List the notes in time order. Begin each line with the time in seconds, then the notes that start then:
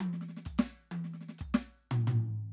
0.01 high tom
0.13 snare
0.21 snare
0.29 snare
0.37 snare
0.46 kick, percussion
0.58 snare, percussion
0.91 high tom
1.04 snare
1.14 snare
1.21 snare
1.29 snare
1.39 kick, percussion
1.54 snare, percussion
1.91 floor tom
2.07 floor tom